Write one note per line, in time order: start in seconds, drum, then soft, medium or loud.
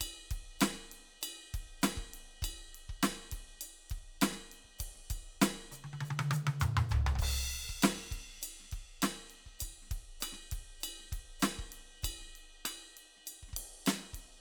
0.01 kick soft
0.01 hi-hat pedal soft
0.01 ride bell loud
0.32 kick medium
0.32 ride medium
0.60 snare loud
0.60 hi-hat pedal soft
0.60 ride bell loud
0.74 snare soft
0.92 ride medium
1.09 snare soft
1.15 snare soft
1.22 hi-hat pedal soft
1.22 ride bell loud
1.54 kick soft
1.54 ride medium
1.63 kick soft
1.82 snare loud
1.82 hi-hat pedal soft
1.82 ride bell loud
1.95 kick soft
1.95 snare soft
2.14 ride medium
2.43 kick soft
2.43 hi-hat pedal soft
2.43 ride bell loud
2.54 kick soft
2.75 ride medium
2.90 kick soft
3.03 snare loud
3.03 hi-hat pedal soft
3.03 ride bell loud
3.32 kick soft
3.32 ride medium
3.62 hi-hat pedal soft
3.62 ride bell medium
3.91 kick soft
3.91 ride medium
3.98 kick soft
4.22 snare loud
4.22 hi-hat pedal soft
4.22 ride bell loud
4.33 snare soft
4.52 ride soft
4.65 kick soft
4.79 kick soft
4.79 hi-hat pedal medium
4.79 ride loud
4.86 kick soft
4.88 kick soft
4.95 snare soft
4.99 snare soft
5.11 kick medium
5.11 ride bell medium
5.19 kick soft
5.42 snare loud
5.42 hi-hat pedal soft
5.42 ride bell loud
5.72 hi-hat pedal medium
5.72 high tom soft
5.85 high tom medium
5.94 high tom medium
6.01 high tom medium
6.06 hi-hat pedal soft
6.11 high tom loud
6.20 high tom loud
6.32 hi-hat pedal medium
6.32 high tom loud
6.48 high tom loud
6.61 hi-hat pedal medium
6.61 mid tom loud
6.78 mid tom loud
6.90 kick soft
6.90 floor tom loud
6.90 hi-hat pedal soft
7.07 floor tom loud
7.16 kick medium
7.16 hi-hat pedal medium
7.16 floor tom medium
7.22 crash loud
7.32 kick soft
7.34 kick soft
7.70 kick soft
7.83 snare loud
7.83 hi-hat pedal medium
7.83 ride bell loud
8.10 kick soft
8.10 snare soft
8.10 ride medium
8.18 kick soft
8.42 hi-hat pedal soft
8.42 ride bell loud
8.60 snare soft
8.63 snare soft
8.72 kick soft
8.72 cross-stick soft
8.72 ride soft
8.79 kick soft
9.03 snare medium
9.03 hi-hat pedal medium
9.03 ride bell loud
9.30 ride soft
9.47 kick soft
9.60 kick soft
9.60 hi-hat pedal medium
9.60 ride bell medium
9.70 kick soft
9.73 kick soft
9.83 snare soft
9.86 snare soft
9.92 kick medium
9.92 ride medium
9.99 kick soft
10.21 cross-stick medium
10.21 hi-hat pedal medium
10.21 ride bell loud
10.33 snare soft
10.52 kick soft
10.52 ride medium
10.59 kick soft
10.62 kick soft
10.81 hi-hat pedal soft
10.81 ride bell loud
11.00 snare soft
11.03 snare soft
11.07 snare soft
11.13 kick soft
11.13 cross-stick soft
11.13 ride medium
11.20 kick soft
11.40 snare loud
11.40 hi-hat pedal medium
11.40 ride bell loud
11.59 kick soft
11.73 ride medium
12.03 kick soft
12.03 hi-hat pedal soft
12.03 ride bell loud
12.11 kick soft
12.21 snare soft
12.26 snare soft
12.36 ride soft
12.66 cross-stick medium
12.66 hi-hat pedal medium
12.66 ride bell loud
12.98 ride medium
13.17 snare soft
13.26 hi-hat pedal soft
13.26 ride bell medium
13.43 kick soft
13.49 snare soft
13.54 kick soft
13.54 ride loud
13.86 snare loud
13.86 hi-hat pedal soft
13.86 ride bell loud
14.14 kick soft
14.14 snare soft
14.14 ride medium